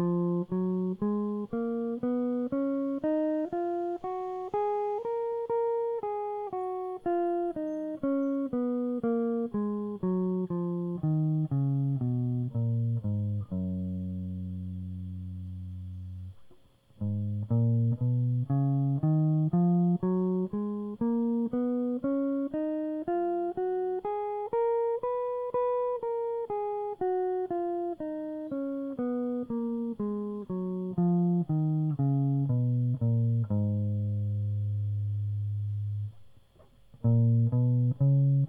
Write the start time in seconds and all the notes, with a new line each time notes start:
0.00 F3
0.53 F#3
1.02 G#3
1.54 A#3
2.04 B3
2.53 C#4
3.04 D#4
3.53 F4
4.04 F#4
4.54 G#4
5.05 A#4
5.50 A#4
6.03 G#4
6.53 F#4
7.06 F4
7.56 D#4
8.04 C#4
8.54 B3
9.04 A#3
9.55 G#3
10.04 F#3
10.51 F3
11.04 D#3
11.53 C#3
12.03 B2
12.57 A#2
13.04 G#2
13.54 F#2
17.04 G#2
17.52 A#2
18.00 B2
18.51 C#3
19.04 D#3
19.54 F3
20.04 F#3
20.54 G#3
21.02 A#3
21.54 B3
22.05 C#4
22.54 D#4
23.08 F4
23.58 F#4
24.05 G#4
24.53 A#4
25.04 B4
25.54 B4
26.03 A#4
26.50 G#4
27.01 F#4
27.51 F4
28.01 D#4
28.52 C#4
28.99 B3
29.51 A#3
30.00 G#3
30.51 F#3
30.99 F3
31.51 D#3
32.00 C#3
32.51 B2
33.04 A#2
33.52 G#2
37.06 A#2
37.54 B2
38.02 C#3